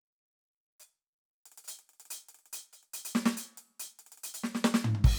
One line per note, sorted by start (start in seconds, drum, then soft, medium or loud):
0.80 hi-hat pedal medium
1.46 closed hi-hat medium
1.52 closed hi-hat soft
1.57 closed hi-hat medium
1.64 closed hi-hat soft
1.68 closed hi-hat loud
1.79 closed hi-hat soft
1.89 closed hi-hat soft
1.93 closed hi-hat soft
2.00 closed hi-hat medium
2.05 closed hi-hat soft
2.10 closed hi-hat loud
2.28 closed hi-hat medium
2.34 closed hi-hat soft
2.39 closed hi-hat soft
2.46 closed hi-hat soft
2.53 closed hi-hat loud
2.73 closed hi-hat medium
2.83 closed hi-hat soft
2.93 closed hi-hat loud
3.05 closed hi-hat loud
3.15 snare loud
3.26 snare loud
3.37 closed hi-hat loud
3.57 closed hi-hat medium
3.80 closed hi-hat loud
3.99 closed hi-hat medium
4.06 closed hi-hat soft
4.12 closed hi-hat medium
4.17 closed hi-hat soft
4.23 closed hi-hat loud
4.34 closed hi-hat loud
4.43 snare medium
4.55 snare medium
4.64 snare loud
4.74 snare loud
4.84 floor tom loud
4.95 floor tom loud
5.04 kick loud
5.04 crash loud